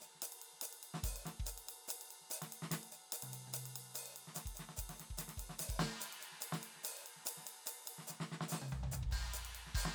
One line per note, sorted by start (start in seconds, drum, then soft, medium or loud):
0.01 hi-hat pedal medium
0.01 ride soft
0.15 snare soft
0.22 hi-hat pedal loud
0.22 ride loud
0.32 ride medium
0.42 ride medium
0.53 snare soft
0.61 hi-hat pedal loud
0.61 ride loud
0.73 ride medium
0.82 hi-hat pedal soft
0.82 ride medium
0.94 snare soft
1.03 kick soft
1.03 hi-hat pedal medium
1.03 ride medium
1.16 ride medium
1.23 snare soft
1.23 hi-hat pedal soft
1.23 ride medium
1.40 kick soft
1.46 hi-hat pedal loud
1.46 ride medium
1.58 ride medium
1.67 hi-hat pedal soft
1.67 ride medium
1.88 hi-hat pedal loud
1.88 ride loud
2.01 ride medium
2.08 hi-hat pedal soft
2.08 ride medium
2.21 snare soft
2.30 hi-hat pedal loud
2.30 ride medium
2.42 snare soft
2.42 ride medium
2.49 hi-hat pedal soft
2.49 ride medium
2.62 snare soft
2.71 snare medium
2.71 hi-hat pedal medium
2.71 ride loud
2.83 ride soft
2.91 hi-hat pedal medium
2.91 ride medium
3.12 hi-hat pedal loud
3.12 ride loud
3.22 high tom soft
3.22 ride medium
3.32 hi-hat pedal soft
3.32 ride medium
3.47 high tom soft
3.53 hi-hat pedal loud
3.53 high tom soft
3.53 ride loud
3.66 ride medium
3.73 hi-hat pedal soft
3.73 ride loud
3.94 hi-hat pedal medium
3.94 ride loud
4.06 ride medium
4.13 hi-hat pedal soft
4.13 ride medium
4.27 snare soft
4.35 snare soft
4.35 hi-hat pedal medium
4.35 ride medium
4.45 kick soft
4.45 ride medium
4.55 hi-hat pedal soft
4.55 ride medium
4.59 snare soft
4.69 snare soft
4.76 kick soft
4.76 hi-hat pedal medium
4.76 ride medium
4.89 snare soft
4.89 ride medium
4.95 hi-hat pedal soft
5.00 snare soft
5.00 ride medium
5.10 kick soft
5.17 snare soft
5.17 hi-hat pedal medium
5.17 ride loud
5.28 snare soft
5.28 ride medium
5.37 kick soft
5.37 hi-hat pedal soft
5.37 ride medium
5.49 snare soft
5.59 snare soft
5.59 hi-hat pedal loud
5.59 ride loud
5.69 kick soft
5.69 ride medium
5.79 snare medium
5.79 hi-hat pedal soft
5.79 ride medium
6.00 hi-hat pedal medium
6.00 ride medium
6.13 ride medium
6.20 hi-hat pedal soft
6.20 ride medium
6.32 snare soft
6.40 hi-hat pedal medium
6.40 ride loud
6.52 snare medium
6.52 ride medium
6.61 hi-hat pedal soft
6.61 ride medium
6.76 snare soft
6.83 hi-hat pedal loud
6.83 ride loud
6.97 ride medium
7.03 hi-hat pedal soft
7.03 ride medium
7.16 snare soft
7.25 hi-hat pedal loud
7.25 ride loud
7.37 snare soft
7.45 hi-hat pedal soft
7.45 ride medium
7.66 hi-hat pedal loud
7.66 ride loud
7.85 hi-hat pedal soft
7.85 ride loud
7.98 snare soft
8.07 snare soft
8.07 hi-hat pedal loud
8.20 snare medium
8.27 hi-hat pedal soft
8.32 snare soft
8.41 snare medium
8.48 snare medium
8.48 hi-hat pedal loud
8.62 high tom medium
8.68 hi-hat pedal soft
8.72 floor tom medium
8.83 floor tom medium
8.91 floor tom medium
8.91 hi-hat pedal loud
9.03 kick soft
9.11 kick soft
9.11 hi-hat pedal soft
9.11 crash soft
9.11 ride medium
9.33 hi-hat pedal loud
9.33 ride medium
9.45 ride medium
9.54 hi-hat pedal soft
9.54 ride medium
9.66 snare soft
9.75 kick medium
9.75 hi-hat pedal loud
9.75 ride medium
9.85 snare medium
9.85 ride soft